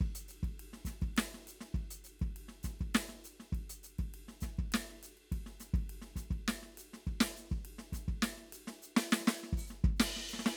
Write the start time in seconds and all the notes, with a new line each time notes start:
0.01 kick, ride
0.15 closed hi-hat
0.29 hi-hat pedal, ride
0.43 kick, ride
0.60 ride
0.73 snare
0.85 kick, snare, hi-hat pedal, ride
1.02 kick, ride
1.17 snare, ride
1.34 snare
1.48 hi-hat pedal, ride
1.61 snare
1.75 kick, ride
1.91 closed hi-hat
2.04 hi-hat pedal, ride
2.20 kick, ride
2.36 ride
2.49 snare
2.63 kick, snare, hi-hat pedal, ride
2.80 kick, ride
2.95 snare, ride
3.09 snare
3.24 hi-hat pedal, ride
3.40 snare
3.53 kick, ride
3.70 closed hi-hat
3.84 hi-hat pedal, ride
3.95 snare
3.99 kick, ride
4.14 ride
4.29 snare
4.41 kick, snare, hi-hat pedal, ride
4.58 kick, ride
4.72 snare, ride
4.90 snare
5.03 hi-hat pedal, ride
5.17 ride
5.32 kick, ride
5.46 snare
5.60 snare, hi-hat pedal, ride
5.74 kick, ride
5.90 ride
6.02 snare
6.16 kick, snare, hi-hat pedal, ride
6.31 kick, ride
6.48 snare, ride
6.63 snare
6.78 hi-hat pedal, ride
6.94 snare
7.07 kick, ride
7.21 snare
7.37 hi-hat pedal
7.52 kick
7.65 ride
7.79 snare
7.93 kick, snare, hi-hat pedal, ride
8.08 kick, ride
8.23 snare, ride
8.38 snare
8.53 hi-hat pedal, ride
8.68 snare
8.83 hi-hat pedal
8.97 snare
9.11 snare, hi-hat pedal
9.21 snare
9.28 snare
9.37 hi-hat pedal
9.44 snare
9.53 kick
9.58 open hi-hat
9.67 snare, hi-hat pedal
9.84 kick
9.97 snare, hi-hat pedal, crash
10.17 snare
10.29 hi-hat pedal
10.34 snare
10.39 snare
10.46 snare